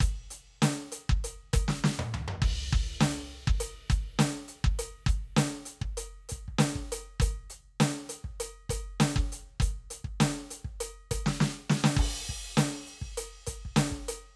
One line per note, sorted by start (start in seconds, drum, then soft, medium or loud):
0.01 closed hi-hat loud
0.01 kick loud
0.31 closed hi-hat medium
0.62 closed hi-hat loud
0.62 snare loud
0.92 closed hi-hat loud
1.10 kick loud
1.25 closed hi-hat loud
1.54 closed hi-hat loud
1.54 kick loud
1.69 snare loud
1.84 snare loud
2.00 high tom loud
2.15 floor tom loud
2.28 mid tom loud
2.42 kick loud
2.42 ride loud
2.73 kick loud
2.73 snare soft
3.01 snare loud
3.01 ride medium
3.48 kick loud
3.61 closed hi-hat loud
3.90 closed hi-hat medium
3.90 kick loud
4.19 closed hi-hat loud
4.19 snare loud
4.49 closed hi-hat medium
4.65 kick loud
4.79 closed hi-hat loud
5.07 closed hi-hat medium
5.07 kick loud
5.37 closed hi-hat loud
5.37 snare loud
5.66 closed hi-hat medium
5.82 kick loud
5.98 closed hi-hat loud
6.29 closed hi-hat loud
6.29 kick medium
6.49 kick medium
6.59 closed hi-hat loud
6.59 snare loud
6.76 kick medium
6.92 closed hi-hat loud
7.20 closed hi-hat loud
7.20 kick loud
7.50 closed hi-hat medium
7.81 closed hi-hat loud
7.81 snare loud
8.06 closed hi-hat loud
8.06 snare soft
8.25 kick medium
8.40 closed hi-hat loud
8.70 closed hi-hat loud
8.70 kick loud
9.01 closed hi-hat loud
9.01 snare loud
9.17 kick loud
9.33 closed hi-hat medium
9.61 closed hi-hat loud
9.61 kick loud
9.91 closed hi-hat loud
10.05 kick medium
10.21 closed hi-hat loud
10.21 snare loud
10.51 closed hi-hat loud
10.65 kick medium
10.81 closed hi-hat loud
11.12 closed hi-hat loud
11.12 kick loud
11.27 snare loud
11.41 snare loud
11.70 snare loud
11.84 snare loud
11.97 kick loud
11.97 crash loud
12.30 kick medium
12.58 closed hi-hat loud
12.58 snare loud
12.87 closed hi-hat medium
13.02 kick medium
13.02 snare soft
13.18 closed hi-hat loud
13.47 closed hi-hat loud
13.47 kick medium
13.66 kick medium
13.77 closed hi-hat loud
13.77 snare loud
13.92 kick medium
14.09 closed hi-hat loud